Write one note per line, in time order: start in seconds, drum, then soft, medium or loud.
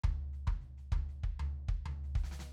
0.04 kick medium
0.04 floor tom medium
0.33 snare soft
0.47 kick medium
0.47 floor tom medium
0.61 snare soft
0.77 snare soft
0.92 kick medium
0.92 floor tom medium
1.09 snare soft
1.24 kick soft
1.40 floor tom medium
1.69 kick medium
1.86 floor tom medium
2.04 snare soft
2.09 snare soft
2.15 kick medium
2.15 snare soft
2.24 snare soft
2.31 snare soft
2.39 snare soft